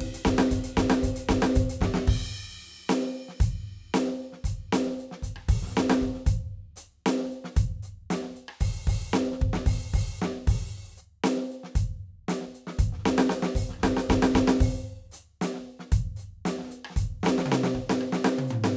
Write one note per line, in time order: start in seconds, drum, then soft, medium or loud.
0.01 kick medium
0.01 ride loud
0.15 closed hi-hat loud
0.25 kick medium
0.25 snare loud
0.39 snare loud
0.52 closed hi-hat loud
0.52 kick medium
0.64 closed hi-hat loud
0.77 kick medium
0.77 snare loud
0.90 snare loud
1.03 closed hi-hat loud
1.03 kick medium
1.16 closed hi-hat loud
1.29 kick medium
1.29 snare loud
1.42 snare loud
1.56 closed hi-hat loud
1.56 kick loud
1.70 closed hi-hat loud
1.81 kick medium
1.81 snare loud
1.94 snare loud
2.04 kick soft
2.04 crash loud
2.08 kick loud
2.90 closed hi-hat loud
2.90 snare loud
3.03 snare soft
3.05 snare soft
3.29 snare soft
3.41 closed hi-hat loud
3.41 kick loud
3.69 closed hi-hat soft
3.94 closed hi-hat loud
3.94 snare loud
4.07 snare soft
4.09 snare soft
4.33 snare soft
4.45 closed hi-hat loud
4.45 kick medium
4.73 closed hi-hat loud
4.73 snare loud
4.87 snare soft
4.90 snare soft
4.96 closed hi-hat soft
4.96 kick soft
4.96 snare soft
5.12 snare medium
5.23 closed hi-hat loud
5.23 kick medium
5.36 cross-stick medium
5.49 open hi-hat loud
5.49 kick loud
5.63 snare soft
5.68 snare soft
5.70 snare soft
5.75 snare loud
5.75 hi-hat pedal medium
5.90 snare loud
6.01 kick medium
6.01 snare soft
6.14 snare soft
6.27 open hi-hat loud
6.27 kick loud
6.76 closed hi-hat loud
6.76 hi-hat pedal medium
7.06 closed hi-hat loud
7.06 snare loud
7.18 snare soft
7.21 snare soft
7.24 kick soft
7.24 snare soft
7.30 closed hi-hat soft
7.30 snare soft
7.45 snare medium
7.57 closed hi-hat loud
7.57 kick loud
7.83 closed hi-hat soft
7.83 hi-hat pedal medium
8.11 closed hi-hat loud
8.11 snare loud
8.23 snare soft
8.27 snare soft
8.30 kick soft
8.30 snare soft
8.33 closed hi-hat soft
8.33 snare soft
8.49 cross-stick medium
8.61 open hi-hat loud
8.61 kick loud
8.87 open hi-hat loud
8.87 kick loud
9.14 snare loud
9.14 hi-hat pedal soft
9.32 snare medium
9.42 kick loud
9.54 snare loud
9.67 open hi-hat loud
9.67 kick loud
9.94 open hi-hat loud
9.94 kick loud
10.19 kick soft
10.19 snare loud
10.19 hi-hat pedal medium
10.48 open hi-hat loud
10.48 kick loud
10.97 hi-hat pedal medium
11.24 closed hi-hat loud
11.24 snare loud
11.37 snare soft
11.39 snare soft
11.52 closed hi-hat soft
11.64 snare medium
11.76 closed hi-hat loud
11.76 kick loud
12.29 closed hi-hat loud
12.29 snare loud
12.42 snare soft
12.47 kick soft
12.55 closed hi-hat medium
12.67 snare medium
12.79 closed hi-hat loud
12.79 kick loud
12.93 snare soft
12.98 snare soft
13.03 snare soft
13.06 snare loud
13.18 snare loud
13.30 snare loud
13.43 snare loud
13.56 open hi-hat loud
13.56 kick loud
13.70 snare soft
13.74 cross-stick soft
13.77 cross-stick soft
13.77 snare soft
13.77 hi-hat pedal soft
13.83 kick medium
13.83 snare loud
13.97 snare medium
14.10 kick loud
14.10 snare loud
14.23 snare loud
14.34 kick medium
14.34 snare loud
14.48 snare loud
14.61 open hi-hat loud
14.61 kick loud
15.12 closed hi-hat loud
15.12 hi-hat pedal medium
15.42 closed hi-hat loud
15.42 snare loud
15.55 snare soft
15.58 kick soft
15.58 snare soft
15.80 snare medium
15.92 closed hi-hat loud
15.92 kick loud
16.17 closed hi-hat medium
16.17 hi-hat pedal medium
16.46 closed hi-hat loud
16.46 snare loud
16.59 snare soft
16.63 kick soft
16.63 snare soft
16.66 snare soft
16.68 snare soft
16.70 closed hi-hat medium
16.70 snare soft
16.85 cross-stick medium
16.90 snare soft
16.97 closed hi-hat loud
16.97 kick loud
17.21 snare loud
17.21 hi-hat pedal soft
17.27 snare loud
17.38 snare loud
17.46 hi-hat pedal medium
17.46 high tom loud
17.52 snare loud
17.64 snare loud
17.75 kick soft
17.75 mid tom medium
17.90 snare loud
18.01 cross-stick medium
18.13 snare loud
18.25 snare loud
18.39 high tom loud
18.48 hi-hat pedal medium
18.48 mid tom loud
18.64 snare loud